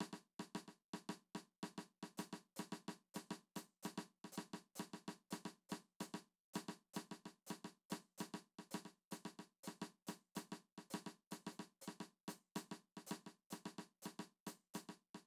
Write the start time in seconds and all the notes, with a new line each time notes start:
0.01 cross-stick
0.13 cross-stick
0.40 cross-stick
0.55 cross-stick
0.68 cross-stick
0.94 cross-stick
1.09 cross-stick
1.35 cross-stick
1.63 cross-stick
1.78 cross-stick
2.03 cross-stick
2.18 cross-stick, hi-hat pedal
2.33 cross-stick
2.57 cross-stick, hi-hat pedal
2.73 cross-stick
2.89 cross-stick
3.15 cross-stick, hi-hat pedal
3.31 cross-stick
3.56 cross-stick, hi-hat pedal
3.83 cross-stick, hi-hat pedal
3.98 cross-stick
4.25 cross-stick
4.33 hi-hat pedal
4.38 cross-stick
4.54 cross-stick
4.76 cross-stick, hi-hat pedal
4.94 cross-stick
5.08 cross-stick
5.31 cross-stick, hi-hat pedal
5.46 cross-stick
5.70 cross-stick, hi-hat pedal
6.01 cross-stick, hi-hat pedal
6.14 cross-stick
6.54 cross-stick, hi-hat pedal
6.69 cross-stick
6.94 cross-stick, hi-hat pedal
7.12 cross-stick
7.26 cross-stick
7.47 cross-stick, hi-hat pedal
7.65 cross-stick
7.90 cross-stick, hi-hat pedal
8.18 cross-stick, hi-hat pedal
8.34 cross-stick
8.59 cross-stick
8.71 cross-stick, hi-hat pedal
8.86 cross-stick
9.12 cross-stick, hi-hat pedal
9.26 cross-stick
9.39 cross-stick
9.64 cross-stick, hi-hat pedal
9.82 cross-stick
10.07 cross-stick, hi-hat pedal
10.36 cross-stick, hi-hat pedal
10.52 cross-stick
10.78 cross-stick
10.91 cross-stick, hi-hat pedal
11.07 cross-stick
11.31 cross-stick, hi-hat pedal
11.47 cross-stick
11.52 hi-hat pedal
11.60 cross-stick
11.82 hi-hat pedal
11.88 cross-stick
12.01 cross-stick
12.28 cross-stick, hi-hat pedal
12.56 cross-stick, hi-hat pedal
12.72 cross-stick
12.97 cross-stick
13.07 hi-hat pedal
13.11 cross-stick
13.27 cross-stick
13.51 cross-stick, hi-hat pedal
13.66 cross-stick
13.79 cross-stick
14.03 cross-stick, hi-hat pedal
14.20 cross-stick
14.47 cross-stick, hi-hat pedal
14.74 cross-stick, hi-hat pedal
14.89 cross-stick
15.15 cross-stick